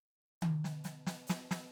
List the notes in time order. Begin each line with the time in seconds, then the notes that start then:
0.41 hi-hat pedal, high tom
0.64 snare
0.84 snare, hi-hat pedal
1.07 snare
1.27 snare, hi-hat pedal
1.51 snare